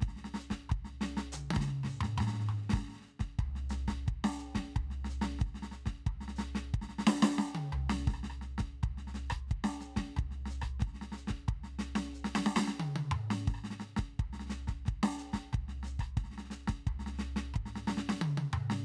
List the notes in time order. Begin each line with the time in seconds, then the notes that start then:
0.01 kick, snare
0.08 snare
0.14 snare
0.17 snare
0.25 snare
0.34 snare
0.39 hi-hat pedal
0.51 kick, snare
0.70 kick, floor tom
0.85 snare
1.01 snare, hi-hat pedal
1.17 snare
1.33 hi-hat pedal, high tom
1.51 snare, high tom
1.57 kick, high tom
1.61 snare, hi-hat pedal, high tom
1.66 snare, high tom
1.84 snare, hi-hat pedal, mid tom
2.01 snare, mid tom
2.18 snare, mid tom
2.23 mid tom
2.27 snare, hi-hat pedal, mid tom
2.34 snare
2.40 snare
2.45 snare
2.48 snare, mid tom
2.52 snare
2.57 snare
2.61 snare
2.65 snare
2.70 kick, snare
2.74 snare
2.78 snare
2.82 snare
2.89 snare
2.92 snare
2.96 snare
3.01 snare
3.07 snare, hi-hat pedal
3.20 kick, snare
3.39 kick, floor tom
3.56 snare
3.70 snare, hi-hat pedal
3.88 kick, snare
4.07 kick, snare
4.25 snare
4.39 snare, hi-hat pedal
4.55 kick, snare
4.76 kick, floor tom
4.91 snare
5.05 snare
5.10 hi-hat pedal
5.22 snare
5.39 kick, snare
5.46 snare
5.52 snare
5.55 snare
5.63 snare
5.72 snare, hi-hat pedal
5.86 kick, snare
6.07 kick, floor tom
6.21 snare
6.28 snare
6.37 snare, hi-hat pedal
6.55 snare
6.74 kick
6.82 snare
6.89 snare
6.99 snare
7.07 snare
7.23 snare
7.39 snare
7.55 high tom
7.73 floor tom
7.90 snare
8.08 kick, snare
8.14 cross-stick
8.19 kick, cross-stick
8.24 snare
8.30 cross-stick
8.42 snare
8.58 kick, snare
8.83 kick, floor tom
8.98 snare
9.08 snare
9.15 snare, hi-hat pedal
9.30 kick, cross-stick
9.47 snare
9.51 kick
9.64 snare
9.81 snare, hi-hat pedal
9.97 kick, snare
10.17 kick, floor tom
10.31 snare
10.46 snare
10.50 hi-hat pedal
10.62 kick, cross-stick
10.80 kick, snare
10.87 snare
10.93 snare
11.02 snare
11.12 snare
11.17 hi-hat pedal
11.28 kick, snare
11.48 kick, floor tom
11.64 snare
11.79 snare, hi-hat pedal
11.96 snare
12.13 snare, hi-hat pedal
12.25 snare
12.36 snare
12.46 snare
12.56 snare
12.68 snare
12.80 high tom
12.96 high tom
13.12 mid tom
13.31 snare
13.48 kick, snare
13.54 cross-stick
13.58 cross-stick
13.64 snare
13.71 snare
13.80 snare, hi-hat pedal
13.97 kick, snare
14.20 kick, floor tom
14.33 snare
14.40 snare
14.46 snare
14.50 snare, hi-hat pedal
14.68 kick, snare
14.86 kick, snare
15.04 snare
15.19 snare, hi-hat pedal
15.34 kick, snare
15.53 kick, floor tom
15.69 snare
15.83 snare, hi-hat pedal
16.00 kick, cross-stick
16.17 kick, snare
16.24 snare
16.29 snare
16.31 snare
16.38 snare
16.45 snare
16.51 snare, hi-hat pedal
16.68 kick, snare
16.87 kick, floor tom
17.00 snare
17.07 snare
17.14 snare
17.18 snare, hi-hat pedal
17.37 snare
17.54 kick, mid tom
17.66 snare
17.88 snare
17.98 snare
18.10 snare
18.22 high tom
18.38 high tom
18.53 mid tom
18.70 snare